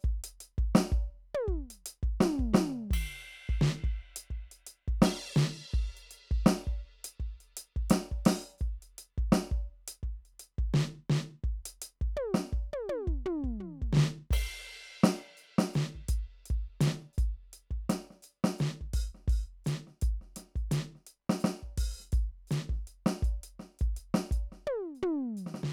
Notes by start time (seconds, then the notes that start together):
0.01 kick, hi-hat pedal
0.24 closed hi-hat
0.41 closed hi-hat
0.58 kick
0.75 snare
0.92 kick
1.35 high tom
1.48 kick
1.71 closed hi-hat
1.86 closed hi-hat
2.03 kick
2.20 snare, floor tom
2.40 kick
2.53 snare, floor tom
2.91 kick, ride
3.50 kick
3.62 snare
3.84 kick
4.17 closed hi-hat
4.31 kick
4.52 closed hi-hat
4.67 closed hi-hat
4.88 kick
5.02 snare, crash
5.37 snare, hi-hat pedal
5.74 kick
5.97 closed hi-hat
6.11 closed hi-hat
6.32 kick
6.47 snare
6.67 kick
7.05 closed hi-hat
7.20 kick
7.41 closed hi-hat
7.57 closed hi-hat
7.77 kick
7.90 open hi-hat, snare
8.12 kick
8.26 open hi-hat, snare
8.59 kick, hi-hat pedal
8.83 closed hi-hat
8.99 closed hi-hat
9.18 kick
9.33 snare
9.52 kick
9.88 closed hi-hat
10.03 kick
10.26 closed hi-hat
10.40 closed hi-hat
10.59 kick
10.74 snare
11.10 snare
11.44 kick
11.66 closed hi-hat
11.82 closed hi-hat
12.02 kick
12.17 high tom
12.35 snare
12.53 kick
12.73 high tom
12.89 high tom
13.08 kick
13.26 floor tom
13.44 kick
13.60 floor tom
13.82 kick
13.93 snare
13.97 snare
14.31 kick, crash, ride
15.04 snare
15.37 hi-hat pedal
15.59 snare
15.74 snare, hi-hat pedal
15.95 kick
16.09 open hi-hat, kick
16.46 open hi-hat
16.51 kick
16.81 open hi-hat, snare
16.87 snare
17.00 snare
17.14 hi-hat pedal
17.18 closed hi-hat, kick
17.54 closed hi-hat
17.71 kick
17.90 closed hi-hat, snare
18.11 snare
18.23 closed hi-hat, hi-hat pedal
18.44 snare
18.59 snare, hi-hat pedal
18.81 kick
18.94 open hi-hat, kick
19.15 snare
19.20 snare
19.28 open hi-hat, kick
19.65 closed hi-hat, snare, hi-hat pedal
19.87 snare
20.02 kick, closed hi-hat
20.22 snare
20.37 closed hi-hat, snare
20.56 closed hi-hat, kick
20.72 closed hi-hat, snare
20.96 snare
21.07 closed hi-hat
21.30 snare
21.40 hi-hat pedal
21.45 snare
21.63 kick
21.78 open hi-hat, kick
22.00 snare
22.13 open hi-hat, kick
22.48 snare, hi-hat pedal
22.52 closed hi-hat
22.70 kick, snare
22.88 closed hi-hat
23.07 snare
23.23 kick, closed hi-hat
23.44 closed hi-hat
23.60 snare
23.79 kick, closed hi-hat
23.97 closed hi-hat
24.15 snare
24.32 kick, closed hi-hat
24.53 snare
24.67 high tom
24.96 hi-hat pedal
25.03 floor tom
25.37 hi-hat pedal
25.47 snare
25.55 snare
25.64 snare